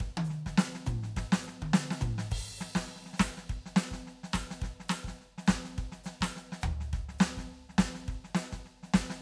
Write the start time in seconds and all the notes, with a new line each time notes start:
0.01 kick, snare
0.08 kick
0.18 high tom
0.25 hi-hat pedal
0.31 snare
0.47 kick, snare
0.51 kick
0.58 snare
0.75 snare
0.87 kick, hi-hat pedal, mid tom
0.95 kick
0.97 kick
1.04 snare
1.17 kick, snare
1.24 kick
1.33 snare
1.43 hi-hat pedal
1.48 snare
1.62 kick, high tom
1.74 snare
1.91 snare
2.01 kick, hi-hat pedal, mid tom
2.19 snare
2.32 kick, crash
2.39 kick
2.44 kick
2.48 snare
2.58 snare, hi-hat pedal
2.76 kick, snare
2.88 snare
2.97 snare
3.03 snare
3.06 snare
3.14 snare, hi-hat pedal
3.20 kick, snare
3.38 snare
3.50 kick, snare
3.57 kick
3.66 snare
3.77 snare, hi-hat pedal
3.92 kick, snare
4.08 snare
4.24 snare
4.33 kick, snare, hi-hat pedal
4.51 snare
4.62 kick, snare
4.69 kick
4.81 snare
4.89 snare, hi-hat pedal
5.05 kick, snare
5.10 kick
5.22 snare
5.39 snare
5.47 kick, snare, hi-hat pedal
5.55 kick
5.65 snare
5.78 kick, snare
5.85 kick
5.93 snare
6.04 snare, hi-hat pedal
6.21 kick, snare
6.37 snare
6.53 snare
6.62 kick, hi-hat pedal, floor tom
6.70 kick
6.73 kick
6.81 snare
6.94 kick, snare
7.00 kick
7.09 snare
7.19 snare, hi-hat pedal
7.37 kick, snare
7.52 snare
7.70 snare
7.79 kick, snare, hi-hat pedal
7.88 kick
7.95 snare
8.09 kick, snare
8.15 kick
8.25 snare
8.35 snare, hi-hat pedal
8.53 kick, snare
8.66 snare
8.84 snare
8.94 kick, snare, hi-hat pedal
9.01 kick
9.04 kick
9.11 snare